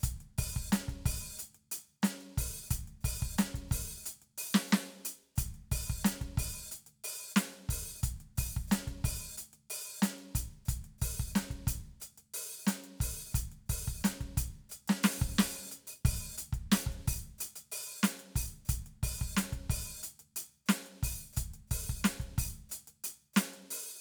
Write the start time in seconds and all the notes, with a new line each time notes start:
0.01 closed hi-hat, kick, hi-hat pedal
0.21 closed hi-hat
0.39 open hi-hat, kick
0.57 kick
0.70 closed hi-hat, snare, hi-hat pedal
0.89 kick, closed hi-hat
1.06 open hi-hat, kick
1.38 closed hi-hat, hi-hat pedal
1.55 closed hi-hat
1.72 open hi-hat
2.03 closed hi-hat, snare, hi-hat pedal
2.22 closed hi-hat
2.38 open hi-hat, kick
2.68 closed hi-hat, kick, hi-hat pedal
2.88 closed hi-hat
3.02 open hi-hat, kick, hi-hat pedal
3.23 kick
3.35 closed hi-hat, hi-hat pedal
3.39 snare
3.55 kick, closed hi-hat
3.69 open hi-hat, kick, hi-hat pedal
4.04 closed hi-hat, hi-hat pedal
4.23 closed hi-hat
4.39 open hi-hat
4.55 snare
4.69 hi-hat pedal
4.73 snare
5.06 closed hi-hat
5.37 closed hi-hat, kick, hi-hat pedal
5.55 closed hi-hat
5.72 open hi-hat, kick
5.90 kick
6.03 closed hi-hat, snare, hi-hat pedal
6.22 kick, closed hi-hat
6.38 open hi-hat, kick
6.69 closed hi-hat, hi-hat pedal
6.87 closed hi-hat
7.05 open hi-hat
7.32 hi-hat pedal
7.37 closed hi-hat, snare
7.54 closed hi-hat
7.70 open hi-hat, kick
8.00 closed hi-hat, kick, hi-hat pedal
8.21 closed hi-hat
8.36 open hi-hat, kick, hi-hat pedal
8.57 kick
8.68 snare, hi-hat pedal
8.73 closed hi-hat
8.88 kick, closed hi-hat
9.01 kick, hi-hat pedal
9.06 open hi-hat
9.35 closed hi-hat, hi-hat pedal
9.54 closed hi-hat
9.71 open hi-hat
10.00 closed hi-hat, snare, hi-hat pedal
10.19 closed hi-hat
10.36 open hi-hat, kick
10.66 closed hi-hat, kick, hi-hat pedal
10.85 closed hi-hat
10.99 open hi-hat, kick, hi-hat pedal
11.20 kick
11.31 hi-hat pedal
11.36 closed hi-hat, snare
11.51 kick, closed hi-hat
11.68 open hi-hat, kick
12.01 closed hi-hat, hi-hat pedal
12.18 closed hi-hat
12.35 open hi-hat
12.66 closed hi-hat, snare, hi-hat pedal
12.85 closed hi-hat
12.99 open hi-hat, kick, hi-hat pedal
13.32 closed hi-hat, kick, hi-hat pedal
13.53 closed hi-hat
13.67 open hi-hat, kick, hi-hat pedal
13.88 kick
14.01 hi-hat pedal
14.05 closed hi-hat, snare
14.21 kick, closed hi-hat
14.38 open hi-hat, kick
14.70 closed hi-hat, hi-hat pedal
14.88 snare, closed hi-hat
15.04 open hi-hat, snare
15.19 kick
15.22 kick
15.39 open hi-hat, snare
15.69 closed hi-hat, hi-hat pedal
15.88 open hi-hat, hi-hat pedal
16.06 open hi-hat, kick
16.35 closed hi-hat, hi-hat pedal
16.53 kick, closed hi-hat
16.72 open hi-hat, snare
16.81 hi-hat pedal
16.87 kick
16.93 closed hi-hat
17.08 open hi-hat, kick
17.39 closed hi-hat, hi-hat pedal
17.56 closed hi-hat
17.73 open hi-hat
18.00 snare, hi-hat pedal
18.05 closed hi-hat
18.20 closed hi-hat
18.36 open hi-hat, kick
18.66 closed hi-hat, kick, hi-hat pedal
18.87 closed hi-hat
19.04 open hi-hat, kick
19.22 kick
19.35 closed hi-hat, snare, hi-hat pedal
19.53 kick, closed hi-hat
19.70 open hi-hat, kick
20.02 closed hi-hat, hi-hat pedal
20.20 closed hi-hat
20.37 open hi-hat
20.67 closed hi-hat, snare, hi-hat pedal
20.87 closed hi-hat
21.03 open hi-hat, kick
21.34 closed hi-hat, hi-hat pedal
21.38 kick
21.54 closed hi-hat
21.68 open hi-hat, kick, hi-hat pedal
21.90 kick
22.01 snare, hi-hat pedal
22.06 closed hi-hat
22.21 kick, closed hi-hat
22.39 open hi-hat, kick
22.70 closed hi-hat, hi-hat pedal
22.88 closed hi-hat
23.05 closed hi-hat
23.34 closed hi-hat, snare, hi-hat pedal
23.54 closed hi-hat
23.71 open hi-hat